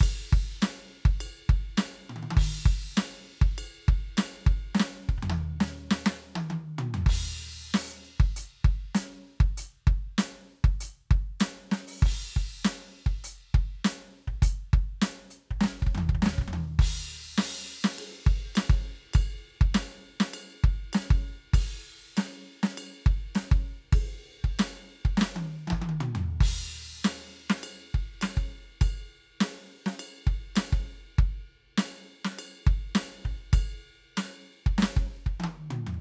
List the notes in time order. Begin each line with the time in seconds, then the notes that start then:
0.01 kick, ride bell
0.33 kick
0.62 snare, ride bell
1.05 kick
1.21 ride bell
1.50 kick
1.78 snare, ride bell
2.10 mid tom
2.16 high tom
2.23 mid tom
2.31 high tom
2.37 kick, crash
2.66 kick
2.97 snare, ride bell
3.42 kick
3.58 ride bell
3.89 kick, snare
4.18 snare, ride bell
4.47 kick, snare
4.75 snare
4.80 snare
5.09 kick
5.18 kick
5.23 floor tom
5.30 high tom
5.61 snare
5.91 snare
6.06 snare
6.36 high tom
6.50 high tom
6.79 mid tom
6.94 floor tom
7.07 kick, crash
7.74 open hi-hat, snare
8.05 closed hi-hat
8.20 kick
8.37 closed hi-hat
8.65 kick
8.95 closed hi-hat, snare
9.40 kick
9.58 closed hi-hat
9.87 kick
10.18 closed hi-hat, snare
10.64 kick
10.81 closed hi-hat
11.11 kick
11.40 closed hi-hat, snare
11.72 snare
11.88 open hi-hat
12.03 kick, hi-hat pedal, crash
12.37 kick
12.65 closed hi-hat, snare
13.06 kick
13.24 open hi-hat
13.55 kick
13.85 closed hi-hat, snare
14.28 kick
14.43 closed hi-hat, kick
14.73 kick
15.02 closed hi-hat, snare
15.31 closed hi-hat
15.51 kick
15.61 snare
15.64 kick, snare
15.83 kick, snare
15.87 kick, snare
15.95 floor tom, high tom
16.09 kick
16.15 kick
16.23 snare
16.26 snare
16.38 kick
16.41 kick, snare
16.48 kick, floor tom
16.53 high tom
16.79 kick, crash
17.38 snare, crash
17.84 snare
17.99 ride
18.27 kick
18.56 snare, ride bell
18.70 kick
19.14 kick, ride bell
19.61 kick
19.75 snare, ride bell
20.20 snare
20.34 ride bell
20.64 kick
20.93 snare, ride bell
21.11 kick
21.54 kick, ride bell, crash
22.17 snare, ride bell
22.63 snare
22.78 ride bell
23.06 kick, snare
23.35 snare, ride bell
23.52 kick
23.93 kick, ride
24.44 kick
24.59 snare, ride bell
25.05 kick
25.18 snare
25.21 snare
25.36 high tom
25.68 high tom
25.71 kick, high tom
25.82 high tom
25.89 high tom
26.01 mid tom
26.15 floor tom
26.41 kick, crash
27.05 snare, ride bell
27.50 snare
27.64 ride bell
27.95 kick
28.22 snare, ride bell
28.37 kick
28.82 kick, ride bell
29.41 snare, ride
29.67 ride
29.86 snare
30.00 ride bell
30.27 kick
30.56 snare, ride bell
30.73 kick
31.17 kick, ride
31.21 snare
31.78 snare, ride bell
32.25 snare
32.39 ride bell
32.67 kick
32.95 snare, ride bell
33.25 kick
33.53 kick, ride bell
34.18 snare, ride bell
34.66 kick
34.78 snare
34.83 snare
34.97 kick
35.27 kick
35.40 high tom
35.44 high tom
35.71 mid tom
35.87 floor tom
35.95 floor tom